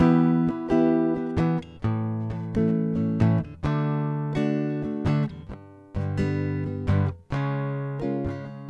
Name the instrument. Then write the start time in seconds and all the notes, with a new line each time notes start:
acoustic guitar
0.01 E3 B3 E4 G4 B4
0.50 E3 B3
0.70 B3 E4 G4 B4
0.74 E3
1.15 B3 E4
1.20 E3
1.39 E3 B3 E4 G4
1.60 E2
1.83 A2 E3
2.31 A2 E3 A3
2.56 E3 A3 C#4
2.60 A2
2.96 A2 E3 A3 C#4
3.21 A2 E3 A3
3.26 C#4
3.46 D3
3.65 D3 A3 D4
3.71 F#4
4.36 D3 A3 D4 F#4
4.83 D3 A3 D4
5.07 D3 A3 D4
5.25 D#3
5.31 E2 G3
5.48 G2
5.96 G2 G3
6.02 D3
6.19 G2 D3 G3 B3
6.65 G3 B3
6.70 D3
6.88 G2 D3 G3 B3
7.33 C#3 G#3
7.38 C#4
8.01 C#3 C#4 F4 A#4
8.06 G#3
8.26 C#3
8.30 G#3 C#4
8.41 C#4
8.48 G#3